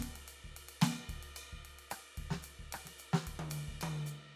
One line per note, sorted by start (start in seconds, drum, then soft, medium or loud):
0.01 kick soft
0.01 ride medium
0.14 snare soft
0.14 ride medium
0.19 snare soft
0.29 hi-hat pedal soft
0.29 ride medium
0.46 kick soft
0.50 kick soft
0.58 ride medium
0.70 ride medium
0.83 snare loud
0.83 hi-hat pedal soft
0.83 ride bell loud
1.10 kick soft
1.10 ride medium
1.24 ride medium
1.37 hi-hat pedal soft
1.37 ride bell medium
1.54 kick soft
1.66 ride medium
1.80 ride soft
1.92 cross-stick medium
1.92 hi-hat pedal medium
1.92 ride medium
2.19 kick soft
2.19 ride medium
2.25 kick soft
2.32 snare medium
2.44 hi-hat pedal medium
2.44 ride medium
2.61 kick soft
2.74 cross-stick medium
2.74 ride medium
2.86 snare soft
2.86 ride medium
3.00 hi-hat pedal medium
3.00 ride medium
3.15 snare medium
3.28 kick soft
3.28 ride medium
3.41 open hi-hat soft
3.41 high tom loud
3.52 hi-hat pedal medium
3.52 ride loud
3.70 kick soft
3.75 kick soft
3.83 high tom loud
3.83 ride bell medium
4.08 hi-hat pedal medium